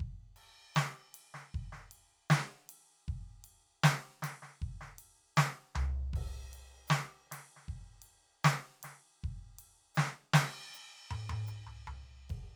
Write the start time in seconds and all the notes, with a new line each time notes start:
0.01 kick
0.37 ride
0.76 snare, hi-hat pedal
0.92 snare
1.15 ride
1.35 snare
1.55 kick
1.73 snare
1.80 snare
1.92 ride
2.30 snare, hi-hat pedal
2.70 ride
3.09 kick
3.45 ride
3.84 snare, hi-hat pedal
4.23 snare, ride
4.43 snare
4.62 kick
4.82 snare
4.99 ride
5.37 snare, hi-hat pedal
5.76 snare, floor tom
6.14 kick, crash
6.54 ride
6.88 snare, hi-hat pedal
6.99 snare
7.32 snare, ride
7.57 snare
7.69 kick
8.03 ride
8.45 snare, hi-hat pedal
8.84 snare, ride
9.25 kick
9.59 ride
9.96 snare, hi-hat pedal
10.34 snare, ride
10.75 hi-hat pedal
11.12 mid tom
11.30 mid tom
11.48 floor tom, hi-hat pedal
11.67 floor tom
11.88 floor tom
12.30 kick, crash